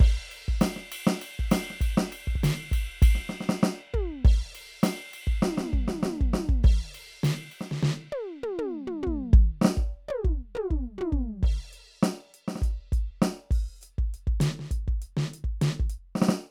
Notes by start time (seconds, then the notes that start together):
0.01 kick, crash
0.32 ride
0.49 kick
0.62 snare, ride
0.77 snare
0.93 hi-hat pedal, ride
1.08 snare
1.20 hi-hat pedal, ride
1.40 kick
1.52 snare, ride
1.71 snare
1.81 kick, ride
1.98 snare
2.13 ride
2.28 kick
2.36 kick
2.44 snare, ride
2.72 kick, ride
3.03 kick, ride
3.16 snare
3.30 snare
3.41 snare
3.50 snare
3.64 snare
3.94 kick, mid tom
4.25 kick, crash
4.55 ride
4.84 snare, ride
5.14 ride
5.28 kick
5.43 snare, floor tom
5.58 snare, floor tom
5.74 kick
5.89 snare, floor tom
6.04 snare, floor tom
6.21 kick
6.34 snare, floor tom
6.50 kick
6.64 kick, crash
6.95 ride
7.24 snare, ride
7.52 ride
7.62 snare
7.72 snare
7.83 snare
8.13 high tom
8.44 mid tom
8.59 mid tom
8.87 floor tom
9.03 floor tom
9.08 kick
9.34 kick
9.62 snare
9.65 snare
9.78 kick
10.09 high tom
10.11 high tom
10.25 kick
10.55 mid tom
10.57 mid tom
10.71 kick
10.98 floor tom
11.01 floor tom
11.13 kick
11.44 kick, crash
11.74 closed hi-hat
12.04 closed hi-hat, snare
12.35 closed hi-hat
12.49 snare
12.56 snare
12.62 closed hi-hat, kick
12.93 closed hi-hat, kick
13.23 closed hi-hat, snare
13.52 open hi-hat, kick
13.82 closed hi-hat, hi-hat pedal
13.99 kick
14.15 closed hi-hat
14.28 kick
14.41 closed hi-hat, snare
14.60 snare
14.72 closed hi-hat, kick
14.88 kick
15.03 closed hi-hat
15.18 snare
15.34 closed hi-hat
15.45 kick
15.62 closed hi-hat, snare
15.80 kick
15.90 closed hi-hat
16.16 snare
16.23 snare
16.29 snare